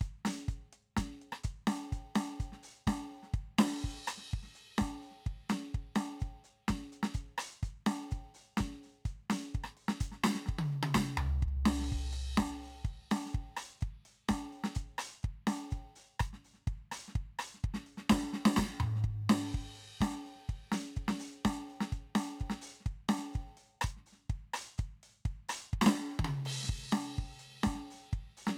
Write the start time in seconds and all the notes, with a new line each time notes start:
0.01 closed hi-hat, kick
0.25 open hi-hat, snare
0.48 closed hi-hat, kick
0.60 snare
0.63 snare
0.73 open hi-hat
0.97 closed hi-hat, kick, snare
1.22 open hi-hat
1.32 cross-stick
1.44 closed hi-hat, kick
1.67 open hi-hat, snare
1.92 closed hi-hat, kick
2.15 open hi-hat, snare
2.40 closed hi-hat, kick
2.52 snare
2.56 snare
2.59 open hi-hat, snare
2.87 closed hi-hat, kick, snare
3.01 snare
3.12 open hi-hat
3.23 snare
3.31 kick, snare
3.36 closed hi-hat
3.58 snare, crash
3.84 kick
4.07 open hi-hat, cross-stick
4.17 snare
4.31 kick, open hi-hat
4.43 snare
4.46 snare
4.51 snare
4.55 open hi-hat
4.78 open hi-hat, kick, snare
5.02 open hi-hat
5.11 snare
5.15 snare
5.18 snare
5.26 closed hi-hat, kick
5.50 open hi-hat, snare
5.74 closed hi-hat, kick
5.95 closed hi-hat, snare
6.20 open hi-hat, kick, snare
6.25 snare
6.44 open hi-hat
6.68 closed hi-hat, kick, snare
6.92 open hi-hat
7.03 snare
7.14 closed hi-hat, kick
7.38 open hi-hat, cross-stick
7.63 closed hi-hat, kick
7.86 open hi-hat, snare
8.11 closed hi-hat, kick, snare
8.18 snare
8.34 open hi-hat
8.57 open hi-hat, kick, snare
8.73 snare
8.83 open hi-hat, snare
8.89 snare
8.91 snare
9.05 closed hi-hat, kick
9.30 open hi-hat, snare
9.54 kick, open hi-hat
9.64 cross-stick
9.77 open hi-hat
9.88 snare
10.00 closed hi-hat, kick
10.12 snare
10.24 snare
10.35 snare
10.46 kick, snare
10.59 high tom
10.71 snare
10.83 high tom
10.94 kick, snare
11.17 floor tom
11.39 kick, hi-hat pedal
11.48 kick
11.66 snare, crash
11.81 snare
11.92 kick
12.13 open hi-hat
12.37 open hi-hat, kick, snare
12.51 snare
12.63 open hi-hat, snare
12.69 snare
12.73 snare
12.81 kick, snare
12.86 closed hi-hat
13.11 open hi-hat, snare
13.26 snare
13.34 kick, closed hi-hat
13.57 open hi-hat, cross-stick
13.81 kick, open hi-hat
14.05 open hi-hat
14.29 open hi-hat, kick, snare
14.53 open hi-hat
14.64 snare
14.75 closed hi-hat, kick
14.98 open hi-hat, cross-stick
15.23 kick, closed hi-hat
15.47 open hi-hat, snare
15.71 open hi-hat, kick
15.96 open hi-hat
16.20 open hi-hat, kick, cross-stick
16.33 snare
16.44 open hi-hat
16.54 snare
16.58 snare
16.62 snare
16.67 kick, closed hi-hat
16.92 open hi-hat, cross-stick
17.08 snare
17.15 kick, closed hi-hat
17.39 open hi-hat, cross-stick
17.54 snare
17.64 kick, closed hi-hat
17.74 snare
17.86 open hi-hat
17.98 snare
18.10 kick, snare
18.22 snare
18.33 snare
18.45 snare
18.56 kick, snare
18.71 snare
18.80 mid tom
18.96 snare
19.04 kick
19.29 snare, crash
19.54 kick
19.63 snare
19.75 open hi-hat
20.01 closed hi-hat, kick, snare
20.11 snare
20.26 open hi-hat
20.36 snare
20.49 kick, closed hi-hat
20.72 open hi-hat, snare
20.97 kick, closed hi-hat
21.08 snare
21.19 open hi-hat
21.45 open hi-hat, kick, snare
21.70 open hi-hat
21.81 snare
21.92 open hi-hat, kick
22.15 open hi-hat, snare
22.26 snare
22.40 kick, closed hi-hat
22.50 snare
22.62 open hi-hat
22.80 snare
22.86 kick, closed hi-hat
23.09 open hi-hat, snare
23.18 snare
23.33 open hi-hat, kick
23.39 snare
23.47 snare
23.54 snare, open hi-hat
23.81 open hi-hat, kick, cross-stick
23.97 snare
24.06 open hi-hat
24.12 snare
24.17 snare
24.30 kick, closed hi-hat
24.54 open hi-hat, cross-stick
24.78 closed hi-hat, kick
25.03 open hi-hat
25.25 kick, closed hi-hat
25.49 open hi-hat, cross-stick
25.73 kick
25.81 snare
25.85 snare
26.19 kick, high tom
26.25 high tom
26.43 high tom, crash
26.63 snare
26.69 kick
26.92 open hi-hat, snare
27.15 kick, open hi-hat
27.23 snare
27.26 snare
27.39 open hi-hat
27.63 open hi-hat, kick, snare
27.75 snare
27.87 open hi-hat, snare
27.94 snare
27.97 snare
28.13 kick, closed hi-hat
28.37 open hi-hat
28.47 snare